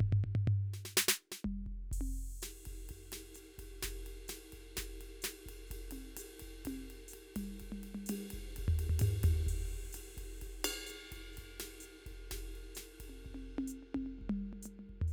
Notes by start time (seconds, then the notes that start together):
0.01 floor tom
0.13 floor tom
0.25 floor tom
0.36 floor tom
0.48 floor tom
0.74 snare
0.86 snare
0.98 snare
1.09 snare
1.32 snare
1.45 kick, mid tom
1.67 kick
1.72 kick
1.92 kick, crash
1.99 kick, high tom
2.43 snare, hi-hat pedal, ride
2.66 kick, ride
2.72 kick
2.90 kick, ride
3.13 snare, ride
3.35 hi-hat pedal, ride
3.59 kick, ride
3.64 kick
3.82 kick, snare, hi-hat pedal, ride
3.89 kick
4.07 ride
4.29 snare, hi-hat pedal, ride
4.53 kick, ride
4.77 kick, snare, hi-hat pedal, ride
5.01 ride
5.23 snare, hi-hat pedal, ride
5.47 kick, ride
5.52 kick
5.68 kick, hi-hat pedal, ride
5.76 kick
5.91 high tom, ride
6.17 hi-hat pedal, ride
6.40 kick, ride
6.66 kick, high tom, ride
6.71 kick
6.91 ride
7.09 hi-hat pedal
7.14 ride
7.36 kick, mid tom, ride
7.42 kick
7.56 hi-hat pedal
7.60 kick, ride
7.67 kick
7.73 mid tom
7.84 ride
7.95 mid tom
8.07 hi-hat pedal, mid tom, ride
8.31 kick, ride
8.39 kick
8.52 hi-hat pedal
8.57 kick, ride
8.64 kick
8.69 floor tom
8.80 ride
8.90 floor tom
9.00 hi-hat pedal, ride, floor tom
9.24 kick, floor tom, ride
9.43 kick, hi-hat pedal
9.49 crash
9.93 hi-hat pedal, ride
10.18 kick, ride
10.23 kick
10.38 hi-hat pedal, ride
10.43 kick
10.48 kick
10.65 ride bell
10.87 hi-hat pedal, ride
11.12 kick, ride
11.18 kick
11.34 hi-hat pedal
11.38 kick, ride
11.44 kick
11.60 snare, ride
11.81 hi-hat pedal
11.86 ride
11.92 snare
12.07 kick, ride
12.12 kick
12.32 kick, snare, ride
12.37 kick
12.56 ride
12.76 snare, hi-hat pedal, ride
13.00 kick, ride
13.10 high tom
13.25 kick, high tom
13.31 kick, high tom
13.49 high tom
13.59 high tom
13.68 hi-hat pedal
13.83 high tom
13.95 kick, high tom
14.07 high tom
14.19 kick, mid tom
14.27 kick, mid tom
14.42 mid tom
14.53 mid tom
14.63 hi-hat pedal, mid tom
14.80 mid tom
14.90 kick
15.02 floor tom
15.08 hi-hat pedal